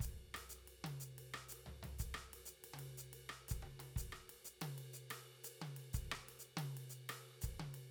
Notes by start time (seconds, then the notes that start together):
0.01 kick, hi-hat pedal
0.05 ride
0.35 cross-stick, ride
0.50 hi-hat pedal
0.68 ride
0.85 high tom, ride
1.01 hi-hat pedal
1.19 ride
1.34 cross-stick
1.49 hi-hat pedal, ride
1.67 floor tom
1.83 floor tom, ride
1.99 kick, hi-hat pedal, ride
2.15 cross-stick
2.34 ride
2.46 hi-hat pedal
2.65 ride
2.74 high tom
2.80 ride
2.98 hi-hat pedal
3.14 ride
3.30 cross-stick
3.49 kick, hi-hat pedal, ride
3.63 high tom
3.80 high tom, ride
3.97 kick, hi-hat pedal, ride
4.13 cross-stick
4.30 ride
4.45 hi-hat pedal
4.62 high tom, ride
4.67 hi-hat pedal
4.79 ride
4.94 hi-hat pedal
5.11 cross-stick, ride
5.44 hi-hat pedal, ride
5.62 hi-hat pedal, high tom
5.77 ride
5.94 kick, hi-hat pedal, ride
6.12 cross-stick
6.29 ride
6.40 hi-hat pedal
6.58 high tom, ride
6.77 ride
6.90 hi-hat pedal
7.10 cross-stick, ride
7.42 kick, hi-hat pedal, ride
7.60 high tom
7.75 ride